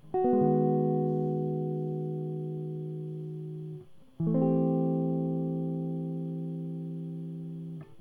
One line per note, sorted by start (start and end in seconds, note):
0.15 3.85 F#4
0.25 3.10 B3
0.34 3.76 G#3
0.44 3.81 D#3
4.21 7.87 E3
4.28 6.84 A3
4.35 7.70 C4
4.42 7.90 G4